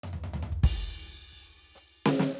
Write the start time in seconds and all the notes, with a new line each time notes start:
0.03 hi-hat pedal, mid tom
0.13 floor tom
0.24 mid tom
0.33 floor tom
0.42 mid tom
0.52 kick
0.63 kick, crash
1.32 kick
1.75 hi-hat pedal
2.06 snare
2.19 snare